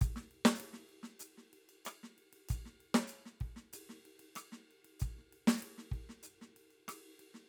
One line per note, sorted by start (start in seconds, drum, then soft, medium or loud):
0.01 kick medium
0.01 hi-hat pedal medium
0.01 ride medium
0.16 snare soft
0.31 ride soft
0.45 snare loud
0.55 hi-hat pedal medium
0.60 ride medium
0.73 snare soft
0.89 ride soft
1.03 snare soft
1.19 hi-hat pedal medium
1.19 ride soft
1.38 snare soft
1.53 ride soft
1.69 ride bell soft
1.85 cross-stick medium
1.85 hi-hat pedal medium
1.85 ride bell medium
2.03 snare soft
2.18 ride soft
2.33 ride soft
2.49 kick medium
2.49 hi-hat pedal medium
2.49 ride bell medium
2.65 snare soft
2.80 ride soft
2.94 snare loud
3.07 hi-hat pedal medium
3.07 ride bell medium
3.26 snare soft
3.40 kick soft
3.40 ride soft
3.56 snare soft
3.73 hi-hat pedal medium
3.73 ride medium
3.89 snare soft
4.05 ride soft
4.19 ride soft
4.36 cross-stick medium
4.36 hi-hat pedal medium
4.36 ride bell medium
4.52 snare soft
4.71 ride soft
4.85 ride soft
4.99 kick medium
4.99 hi-hat pedal medium
4.99 ride bell soft
5.18 snare soft
5.33 ride soft
5.47 snare loud
5.57 hi-hat pedal medium
5.62 ride medium
5.78 snare soft
5.92 kick soft
5.92 ride soft
6.09 snare soft
6.23 floor tom soft
6.23 hi-hat pedal medium
6.23 ride soft
6.41 snare soft
6.56 ride soft
6.71 ride bell soft
6.88 cross-stick medium
6.88 hi-hat pedal medium
6.88 ride medium
7.19 ride soft
7.34 snare soft